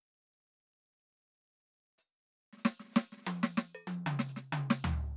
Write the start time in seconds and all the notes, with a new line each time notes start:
1.98 hi-hat pedal
2.53 snare
2.57 snare, hi-hat pedal
2.61 snare
2.65 snare
2.80 snare
2.84 snare
2.88 snare
2.91 snare, hi-hat pedal
2.96 snare
3.12 snare
3.17 snare
3.22 snare, hi-hat pedal
3.27 high tom
3.43 snare
3.57 snare, hi-hat pedal
3.75 percussion
3.87 hi-hat pedal, open hi-hat, high tom
4.06 mid tom
4.19 snare
4.28 hi-hat pedal
4.36 snare
4.52 hi-hat pedal, mid tom
4.70 snare
4.84 floor tom, hi-hat pedal